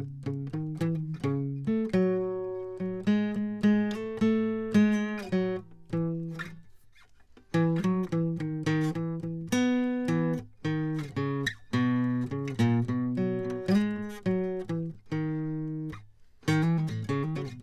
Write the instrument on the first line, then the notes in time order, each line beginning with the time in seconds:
acoustic guitar
0.00 C#3
0.27 C#3
0.54 D#3
0.81 E3
0.96 D#3
1.24 C#3
1.68 A3
1.94 F#3
2.81 F#3
3.08 G#3
3.37 G#3
3.64 G#3
3.96 A3
4.22 A3
4.75 G#3
5.33 F#3
5.57 E3
5.94 E3
7.55 E3
7.85 F#3
8.13 E3
8.41 D#3
8.67 D#3
8.96 E3
9.24 E3
9.53 B3
10.09 E3
10.65 D#3
11.17 C#3
11.74 B2
12.32 C#3
12.60 A#2
12.89 B2
13.18 F#3
13.46 B2
13.69 G#3
14.26 F#3
14.70 E3
15.12 D#3
16.48 D#3
16.64 E3
16.78 D#3
16.89 A2
17.10 C#3
17.24 D#3
17.37 C#3
17.47 B2